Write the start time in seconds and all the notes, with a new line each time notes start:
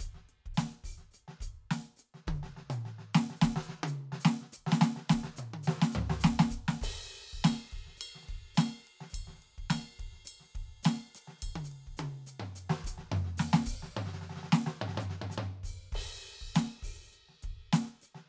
0.01 closed hi-hat, kick
0.07 kick
0.16 snare
0.30 closed hi-hat
0.47 kick
0.55 closed hi-hat, snare, hi-hat pedal
0.71 snare
0.85 open hi-hat, kick
0.99 snare
1.12 closed hi-hat, hi-hat pedal
1.29 snare
1.42 closed hi-hat, kick
1.47 kick
1.72 closed hi-hat, snare
1.98 closed hi-hat, hi-hat pedal
2.15 snare
2.28 kick, high tom
2.35 kick
2.39 kick
2.44 snare
2.58 snare
2.71 hi-hat pedal, mid tom
2.86 snare
3.00 snare
3.15 snare, hi-hat pedal
3.31 snare
3.37 hi-hat pedal
3.43 kick, snare
3.57 snare
3.64 hi-hat pedal
3.70 snare
3.84 hi-hat pedal, high tom
4.13 snare
4.21 hi-hat pedal
4.26 snare
4.42 snare
4.54 hi-hat pedal
4.58 kick
4.68 snare
4.73 snare
4.82 snare, hi-hat pedal
4.97 snare
5.10 kick, snare, hi-hat pedal
5.25 snare
5.38 hi-hat pedal, mid tom
5.55 high tom
5.64 hi-hat pedal
5.69 snare
5.83 snare
5.93 hi-hat pedal, floor tom
6.11 snare
6.21 kick, snare, hi-hat pedal
6.40 snare
6.51 kick, hi-hat pedal
6.58 kick
6.69 snare
6.74 cross-stick
6.83 kick, hi-hat pedal, crash
7.34 kick
7.45 snare, ride bell
7.53 snare
7.73 kick, ride
7.88 snare
7.98 hi-hat pedal, ride bell
8.16 snare
8.24 snare
8.30 kick, ride
8.35 kick
8.56 snare, hi-hat pedal, ride bell
8.88 ride
9.02 snare
9.11 kick, hi-hat pedal
9.16 ride bell
9.20 kick
9.28 snare
9.35 snare
9.43 ride
9.59 kick
9.71 snare, hi-hat pedal, ride bell
10.00 kick, ride
10.13 snare
10.26 hi-hat pedal, ride bell
10.41 snare
10.47 snare
10.56 kick, ride
10.62 kick
10.84 snare, hi-hat pedal, ride bell
11.16 hi-hat pedal, ride
11.29 snare
11.39 hi-hat pedal
11.43 kick, ride bell
11.50 kick
11.53 kick, high tom
11.58 open hi-hat
11.65 hi-hat pedal
11.73 ride
11.88 kick
11.98 hi-hat pedal, high tom, ride
12.28 hi-hat pedal, ride
12.41 mid tom
12.57 hi-hat pedal, ride
12.71 snare
12.85 kick, hi-hat pedal, ride
12.91 kick
12.94 kick
12.99 snare
13.13 floor tom
13.26 snare
13.39 snare, hi-hat pedal
13.54 snare
13.61 snare
13.67 kick, hi-hat pedal
13.74 kick
13.84 snare
13.98 mid tom
14.07 snare
14.15 snare
14.22 snare
14.31 snare
14.37 snare
14.44 snare
14.53 snare
14.68 snare
14.83 mid tom
14.89 snare
14.96 snare, mid tom
15.01 hi-hat pedal
15.11 snare
15.23 mid tom
15.31 snare, hi-hat pedal
15.39 mid tom
15.64 kick, hi-hat pedal
15.70 kick
15.93 kick, crash
16.02 kick
16.42 kick
16.56 closed hi-hat, snare
16.84 open hi-hat, kick
16.89 kick
17.05 snare
17.13 open hi-hat, hi-hat pedal
17.30 snare
17.35 snare
17.39 snare
17.44 kick, closed hi-hat
17.50 kick
17.74 closed hi-hat, snare
17.84 snare
18.03 hi-hat pedal, open hi-hat
18.16 snare